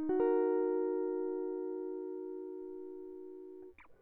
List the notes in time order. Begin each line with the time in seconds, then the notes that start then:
0.00 D#4
0.10 F#4
0.20 A#4